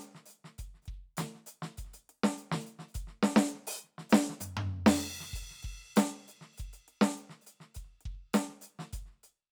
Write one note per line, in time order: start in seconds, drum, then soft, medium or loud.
0.01 closed hi-hat soft
0.15 snare soft
0.26 closed hi-hat soft
0.26 hi-hat pedal medium
0.45 snare soft
0.58 closed hi-hat soft
0.58 kick soft
0.75 snare soft
0.82 snare soft
0.82 closed hi-hat soft
0.82 hi-hat pedal soft
0.88 kick soft
0.94 kick soft
0.97 kick soft
1.17 closed hi-hat medium
1.17 snare medium
1.35 snare soft
1.47 closed hi-hat soft
1.47 hi-hat pedal medium
1.62 snare medium
1.78 closed hi-hat medium
1.78 kick soft
1.85 snare soft
1.89 snare soft
1.94 closed hi-hat medium
2.10 closed hi-hat soft
2.24 snare medium
2.38 closed hi-hat soft
2.52 snare loud
2.61 hi-hat pedal soft
2.66 closed hi-hat soft
2.79 snare soft
2.89 hi-hat pedal soft
2.95 closed hi-hat medium
2.95 kick medium
3.02 kick soft
3.05 kick soft
3.05 snare soft
3.23 snare medium
3.36 snare loud
3.48 hi-hat pedal soft
3.54 snare soft
3.67 open hi-hat loud
3.75 hi-hat pedal soft
3.84 snare soft
3.98 snare soft
4.10 snare loud
4.10 hi-hat pedal medium
4.29 snare soft
4.41 hi-hat pedal loud
4.41 mid tom medium
4.57 mid tom loud
4.87 snare loud
4.87 crash loud
4.95 snare soft
5.21 snare soft
5.34 closed hi-hat medium
5.34 kick soft
5.40 kick soft
5.43 kick soft
5.51 snare soft
5.54 snare soft
5.59 snare soft
5.59 closed hi-hat soft
5.64 kick soft
5.96 closed hi-hat loud
5.96 snare loud
6.28 open hi-hat soft
6.28 hi-hat pedal medium
6.41 snare soft
6.52 snare soft
6.52 hi-hat pedal soft
6.56 closed hi-hat medium
6.56 kick soft
6.56 snare soft
6.73 closed hi-hat soft
6.88 closed hi-hat soft
7.01 snare loud
7.17 closed hi-hat soft
7.30 snare soft
7.41 hi-hat pedal soft
7.47 closed hi-hat soft
7.61 snare soft
7.72 closed hi-hat medium
7.72 snare soft
7.77 kick soft
7.85 snare soft
7.90 snare soft
8.01 closed hi-hat soft
8.06 kick soft
8.12 kick soft
8.15 kick soft
8.34 closed hi-hat medium
8.34 snare medium
8.49 snare soft
8.62 closed hi-hat soft
8.62 hi-hat pedal medium
8.79 snare medium
8.93 closed hi-hat medium
8.93 kick soft
9.02 kick soft
9.02 snare soft
9.10 snare soft
9.16 snare soft
9.24 closed hi-hat soft